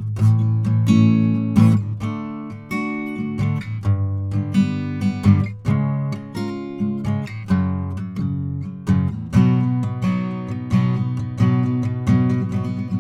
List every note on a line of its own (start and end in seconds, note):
0.18 0.66 A2
0.18 0.64 E3
0.41 0.63 C#4
0.65 0.92 A2
0.65 0.92 E3
0.65 0.87 C#4
0.89 1.37 A2
0.89 1.35 E3
0.89 1.58 A3
0.89 1.58 C#4
1.36 1.56 A2
1.36 1.56 E3
1.57 1.77 A2
1.57 1.75 E3
1.57 1.75 A3
1.57 1.78 C#4
1.75 1.97 A2
1.75 1.98 D3
2.02 2.51 D3
2.02 2.52 A3
2.02 2.74 D4
2.51 3.20 D3
2.51 2.72 A3
2.72 3.18 A3
2.72 3.17 D4
2.72 3.55 F#4
3.17 3.40 A3
3.17 3.42 D4
3.21 3.40 D3
3.41 3.59 D3
3.41 3.59 A3
3.41 3.62 D4
3.59 3.82 A2
3.59 3.82 D3
3.64 3.83 E2
3.86 4.32 G2
4.33 4.60 G2
4.33 4.58 D3
4.33 4.54 G3
4.56 5.03 D3
4.56 5.03 G3
4.56 5.02 B3
4.60 5.03 G2
5.03 5.25 G2
5.03 5.25 D3
5.03 5.26 G3
5.03 5.26 B3
5.25 5.47 G2
5.25 5.49 D3
5.25 5.49 G3
5.25 5.45 B3
5.68 6.13 C#3
5.68 6.14 G#3
5.73 6.35 C#4
6.14 6.29 C#3
6.14 6.35 G#3
6.36 7.08 C#4
6.36 7.06 F4
6.36 6.55 A#4
6.41 6.80 G#3
6.82 7.04 C#3
6.82 7.06 G#3
7.06 7.28 C#3
7.06 7.30 G#3
7.06 7.24 C#4
7.29 7.47 A2
7.50 7.98 F#2
7.50 7.95 C#3
7.99 8.20 F#2
8.22 8.66 F#2
8.22 8.64 C#3
8.64 8.86 F#2
8.64 8.88 C#3
8.88 9.10 F#2
8.88 9.10 C#3
9.10 9.81 E2
9.10 9.31 A2
9.35 9.65 B2
9.35 9.52 F#3
9.35 10.04 B3
9.52 9.63 F#3
9.66 9.84 B2
9.76 10.02 F#3
9.85 10.03 B2
10.04 10.49 B2
10.04 10.50 F#3
10.04 10.73 B3
10.08 10.76 D#4
10.50 10.71 B2
10.50 10.72 F#3
10.72 10.99 B2
10.72 10.92 F#3
10.72 10.96 B3
10.78 13.00 D#4
10.92 11.11 F#3
10.92 11.44 B3
10.99 11.19 B2
11.13 11.36 F#3
11.19 11.40 B2
11.41 11.67 B2
11.41 11.65 F#3
11.41 12.13 B3
11.65 11.84 B2
11.65 11.85 F#3
11.85 12.08 B2
11.85 11.99 F#3
12.09 12.31 B2
12.09 12.31 F#3
12.31 12.43 B2
12.31 12.39 F#3
12.36 12.52 B3
12.41 12.54 B2
12.41 12.52 F#3
12.54 12.79 B2
12.54 12.67 F#3
12.54 12.66 B3
12.66 12.81 F#3
12.66 12.89 B3
12.79 13.00 B2
12.79 12.91 F#3
12.89 13.00 F#3
12.89 13.00 B3